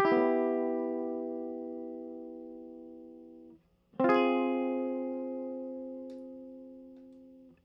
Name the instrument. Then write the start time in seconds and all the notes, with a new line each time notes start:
electric guitar
0.00 G4
0.05 E4
0.12 B3
0.18 A2
4.00 C4
4.05 F4
4.09 G#4